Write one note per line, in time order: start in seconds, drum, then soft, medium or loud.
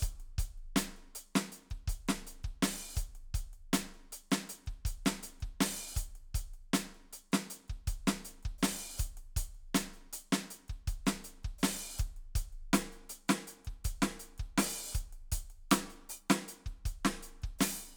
0.01 closed hi-hat medium
0.01 kick medium
0.01 hi-hat pedal medium
0.20 closed hi-hat soft
0.39 closed hi-hat medium
0.39 kick medium
0.58 closed hi-hat soft
0.76 closed hi-hat loud
0.76 snare loud
0.97 closed hi-hat soft
1.15 closed hi-hat medium
1.35 snare loud
1.35 closed hi-hat soft
1.52 closed hi-hat medium
1.71 kick soft
1.71 closed hi-hat soft
1.88 closed hi-hat medium
1.88 kick medium
2.08 snare loud
2.08 closed hi-hat soft
2.27 closed hi-hat medium
2.44 kick soft
2.44 closed hi-hat soft
2.63 open hi-hat loud
2.63 snare loud
2.96 closed hi-hat medium
2.96 kick medium
2.96 hi-hat pedal medium
3.15 closed hi-hat soft
3.35 closed hi-hat medium
3.35 kick medium
3.53 closed hi-hat soft
3.73 closed hi-hat loud
3.73 snare loud
3.94 closed hi-hat soft
4.13 closed hi-hat medium
4.32 snare loud
4.32 closed hi-hat soft
4.50 closed hi-hat medium
4.67 kick soft
4.67 closed hi-hat soft
4.85 closed hi-hat medium
4.85 kick medium
5.06 snare loud
5.06 closed hi-hat soft
5.23 closed hi-hat medium
5.41 kick soft
5.41 closed hi-hat soft
5.61 open hi-hat loud
5.61 snare loud
5.96 closed hi-hat medium
5.96 kick medium
5.96 hi-hat pedal medium
6.16 closed hi-hat soft
6.35 closed hi-hat medium
6.35 kick medium
6.54 closed hi-hat soft
6.74 closed hi-hat medium
6.74 snare loud
6.95 closed hi-hat soft
7.13 closed hi-hat medium
7.33 closed hi-hat soft
7.33 snare loud
7.50 closed hi-hat medium
7.68 kick soft
7.68 closed hi-hat soft
7.88 closed hi-hat medium
7.88 kick medium
8.07 closed hi-hat soft
8.07 snare loud
8.25 closed hi-hat medium
8.43 kick medium
8.43 closed hi-hat soft
8.59 hi-hat pedal soft
8.63 open hi-hat loud
8.63 snare loud
8.98 closed hi-hat medium
8.98 kick medium
8.98 hi-hat pedal medium
9.18 closed hi-hat soft
9.37 closed hi-hat loud
9.37 kick medium
9.55 closed hi-hat soft
9.75 closed hi-hat loud
9.75 snare loud
9.94 closed hi-hat soft
10.13 closed hi-hat medium
10.33 snare loud
10.33 closed hi-hat soft
10.51 closed hi-hat medium
10.69 kick soft
10.69 closed hi-hat soft
10.88 closed hi-hat medium
10.88 kick medium
11.07 closed hi-hat soft
11.07 snare loud
11.25 closed hi-hat medium
11.44 kick soft
11.44 closed hi-hat soft
11.59 hi-hat pedal soft
11.63 open hi-hat loud
11.63 snare loud
11.98 kick medium
11.98 closed hi-hat medium
11.98 hi-hat pedal medium
12.17 closed hi-hat soft
12.36 closed hi-hat medium
12.36 kick medium
12.53 closed hi-hat soft
12.74 closed hi-hat loud
12.74 snare loud
12.92 closed hi-hat soft
13.10 closed hi-hat medium
13.29 closed hi-hat soft
13.29 snare loud
13.48 closed hi-hat medium
13.65 kick soft
13.65 closed hi-hat soft
13.85 closed hi-hat medium
13.85 kick medium
14.03 snare loud
14.03 closed hi-hat soft
14.20 closed hi-hat medium
14.38 kick soft
14.38 closed hi-hat soft
14.58 open hi-hat loud
14.58 snare loud
14.93 closed hi-hat medium
14.93 kick medium
14.93 cross-stick soft
14.93 hi-hat pedal medium
15.13 closed hi-hat soft
15.32 closed hi-hat loud
15.32 kick medium
15.50 closed hi-hat soft
15.71 closed hi-hat loud
15.71 snare loud
15.90 closed hi-hat soft
16.09 open hi-hat medium
16.09 hi-hat pedal soft
16.30 closed hi-hat soft
16.30 snare loud
16.48 closed hi-hat medium
16.66 kick soft
16.66 closed hi-hat soft
16.86 closed hi-hat medium
16.86 kick medium
17.05 snare loud
17.05 closed hi-hat soft
17.23 closed hi-hat medium
17.42 kick soft
17.42 closed hi-hat soft
17.59 open hi-hat loud
17.59 snare loud
17.59 hi-hat pedal soft